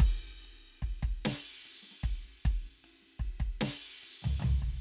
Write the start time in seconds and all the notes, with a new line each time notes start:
0.01 kick, ride, crash
0.46 ride
0.83 kick, ride
1.03 kick
1.26 snare, crash
1.66 ride
1.83 snare
1.92 snare
2.04 kick, ride
2.25 snare
2.46 kick, ride
2.66 snare
2.85 ride
3.02 snare
3.20 kick, ride
3.41 kick
3.62 snare, crash
4.04 ride
4.23 floor tom, high tom
4.40 floor tom, high tom
4.62 kick